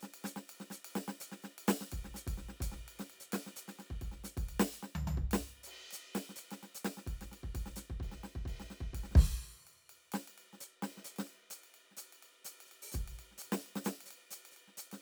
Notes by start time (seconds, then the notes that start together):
0.01 snare, hi-hat pedal
0.14 ride
0.24 snare, hi-hat pedal
0.36 snare
0.48 hi-hat pedal, ride
0.60 snare
0.72 hi-hat pedal
0.85 ride
0.94 snare, hi-hat pedal
1.08 snare
1.20 hi-hat pedal, ride
1.32 snare
1.42 snare, hi-hat pedal
1.58 ride
1.68 snare, hi-hat pedal
1.81 snare
1.90 kick, hi-hat pedal, ride
2.05 snare
2.14 snare, hi-hat pedal
2.27 kick, ride
2.38 snare
2.49 snare
2.61 kick, hi-hat pedal, ride
2.72 snare
2.88 ride
2.99 snare, ride
3.10 ride
3.20 hi-hat pedal
3.33 snare, ride
3.47 snare
3.56 hi-hat pedal, ride
3.68 snare, ride
3.79 snare, ride
3.90 kick
4.02 kick, ride
4.12 snare
4.24 snare, hi-hat pedal
4.37 kick, ride
4.49 ride
4.60 snare
4.72 hi-hat pedal, ride
4.83 snare
4.95 floor tom
5.07 floor tom
5.18 kick
5.31 snare, ride
5.64 hi-hat pedal, ride
5.91 hi-hat pedal, ride
6.13 snare, hi-hat pedal, ride
6.29 snare
6.36 hi-hat pedal, ride
6.51 snare, ride
6.63 snare, ride
6.75 hi-hat pedal
6.85 snare, ride
6.97 snare
7.07 kick, ride
7.21 snare, ride
7.32 snare, ride
7.44 kick
7.55 kick, ride
7.66 snare
7.76 snare, hi-hat pedal
7.90 kick
8.00 kick, ride
8.12 snare
8.24 snare
8.35 kick
8.46 kick, ride
8.60 snare
8.70 snare
8.81 kick
8.94 kick, ride
9.04 snare
9.11 snare
9.15 kick, snare, crash
9.67 ride
9.90 ride
10.12 snare, ride
10.28 ride
10.38 ride
10.53 snare
10.61 hi-hat pedal, ride
10.83 snare, ride
10.97 snare
11.05 hi-hat pedal, ride
11.16 snare, ride
11.27 ride
11.50 hi-hat pedal, ride
11.64 ride
11.74 ride
11.91 snare
11.97 hi-hat pedal, ride
12.13 ride
12.23 ride
12.45 hi-hat pedal, ride
12.61 ride
12.66 hi-hat pedal
12.72 ride
12.82 open hi-hat
12.92 kick, hi-hat pedal, ride
13.08 ride
13.13 hi-hat pedal
13.19 ride
13.32 snare
13.38 hi-hat pedal, ride
13.52 snare, ride
13.60 hi-hat pedal
13.66 ride
13.76 snare
13.85 snare, hi-hat pedal, ride
14.01 ride
14.06 hi-hat pedal
14.31 snare, hi-hat pedal, ride
14.45 ride
14.52 hi-hat pedal
14.57 ride
14.68 snare
14.77 hi-hat pedal, ride
14.92 snare, ride